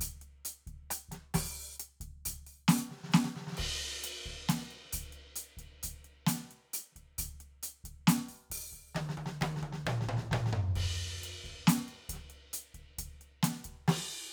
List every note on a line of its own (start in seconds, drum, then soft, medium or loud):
0.01 closed hi-hat loud
0.01 kick soft
0.22 closed hi-hat soft
0.46 closed hi-hat loud
0.67 kick soft
0.67 closed hi-hat soft
0.85 kick soft
0.91 closed hi-hat loud
0.91 cross-stick medium
1.09 kick soft
1.09 snare soft
1.09 closed hi-hat medium
1.35 open hi-hat loud
1.35 kick soft
1.35 snare medium
1.75 hi-hat pedal soft
1.80 closed hi-hat loud
2.01 kick soft
2.01 closed hi-hat medium
2.26 closed hi-hat loud
2.26 kick soft
2.47 open hi-hat medium
2.69 open hi-hat loud
2.69 snare loud
2.91 snare soft
2.96 snare soft
2.99 snare soft
3.04 snare medium
3.10 snare soft
3.10 hi-hat pedal medium
3.14 snare loud
3.25 snare medium
3.37 snare soft
3.42 snare soft
3.48 snare medium
3.53 snare medium
3.58 kick medium
3.58 snare soft
3.58 ride loud
4.04 closed hi-hat loud
4.26 kick soft
4.26 closed hi-hat soft
4.49 snare loud
4.49 closed hi-hat medium
4.71 closed hi-hat soft
4.85 snare soft
4.93 closed hi-hat loud
4.93 kick soft
5.13 closed hi-hat soft
5.29 snare soft
5.36 closed hi-hat loud
5.58 kick soft
5.58 closed hi-hat medium
5.84 closed hi-hat loud
5.84 kick soft
6.05 closed hi-hat soft
6.27 closed hi-hat loud
6.27 snare loud
6.51 closed hi-hat soft
6.74 closed hi-hat loud
6.92 snare soft
6.96 kick soft
6.96 closed hi-hat soft
7.19 closed hi-hat loud
7.19 kick soft
7.41 closed hi-hat soft
7.63 closed hi-hat loud
7.85 kick soft
7.85 closed hi-hat medium
8.08 closed hi-hat loud
8.08 snare loud
8.29 kick soft
8.29 open hi-hat medium
8.51 kick soft
8.51 open hi-hat loud
8.73 kick soft
8.73 open hi-hat medium
8.95 kick soft
8.95 snare medium
8.95 high tom loud
9.10 snare medium
9.18 kick soft
9.18 high tom medium
9.26 snare medium
9.42 kick soft
9.42 snare medium
9.42 hi-hat pedal soft
9.42 high tom loud
9.57 snare medium
9.62 kick soft
9.62 high tom medium
9.73 snare medium
9.86 kick soft
9.86 snare medium
9.86 hi-hat pedal soft
9.86 mid tom loud
10.01 snare medium
10.07 kick soft
10.07 mid tom loud
10.18 snare medium
10.31 kick soft
10.31 snare medium
10.31 mid tom loud
10.46 snare medium
10.53 kick soft
10.53 floor tom loud
10.76 kick medium
10.76 ride loud
10.84 kick soft
11.24 closed hi-hat medium
11.45 kick soft
11.45 closed hi-hat soft
11.68 closed hi-hat loud
11.68 snare loud
11.89 closed hi-hat soft
12.10 kick soft
12.10 closed hi-hat medium
12.14 snare soft
12.30 closed hi-hat soft
12.54 closed hi-hat loud
12.75 kick soft
12.75 closed hi-hat soft
12.99 kick soft
12.99 closed hi-hat loud
13.22 closed hi-hat soft
13.43 snare loud
13.43 closed hi-hat loud
13.65 kick soft
13.65 closed hi-hat medium
13.88 snare loud
13.88 crash loud